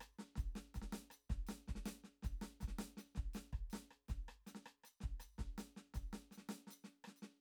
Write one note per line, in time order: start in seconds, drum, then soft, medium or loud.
0.01 cross-stick medium
0.01 hi-hat pedal soft
0.19 snare soft
0.36 kick soft
0.36 snare soft
0.36 hi-hat pedal soft
0.56 snare medium
0.75 kick soft
0.75 snare soft
0.75 hi-hat pedal soft
0.82 snare soft
0.93 snare medium
1.11 cross-stick soft
1.11 hi-hat pedal soft
1.30 kick soft
1.30 snare soft
1.47 snare medium
1.47 hi-hat pedal soft
1.68 kick soft
1.68 snare soft
1.74 kick soft
1.74 snare soft
1.86 snare medium
1.86 hi-hat pedal soft
2.04 snare soft
2.23 kick soft
2.23 snare soft
2.23 hi-hat pedal soft
2.42 snare medium
2.61 kick soft
2.61 snare soft
2.61 hi-hat pedal soft
2.68 snare soft
2.79 snare medium
2.98 snare soft
2.98 hi-hat pedal soft
3.15 kick soft
3.15 snare soft
3.34 snare medium
3.34 hi-hat pedal soft
3.53 kick soft
3.53 cross-stick soft
3.71 snare medium
3.71 hi-hat pedal soft
3.91 cross-stick soft
4.09 kick soft
4.09 snare soft
4.09 hi-hat pedal soft
4.29 cross-stick medium
4.47 snare soft
4.47 hi-hat pedal soft
4.55 snare soft
4.66 cross-stick medium
4.84 cross-stick soft
4.84 hi-hat pedal soft
5.01 kick soft
5.01 snare soft
5.20 cross-stick soft
5.20 hi-hat pedal soft
5.39 kick soft
5.39 snare soft
5.58 snare medium
5.58 hi-hat pedal soft
5.77 snare soft
5.94 kick soft
5.94 snare soft
5.94 hi-hat pedal soft
6.13 snare medium
6.32 snare soft
6.32 hi-hat pedal soft
6.38 snare soft
6.49 snare medium
6.67 snare soft
6.67 hi-hat pedal soft
6.84 snare soft
7.05 cross-stick medium
7.05 snare soft
7.17 hi-hat pedal soft
7.23 snare soft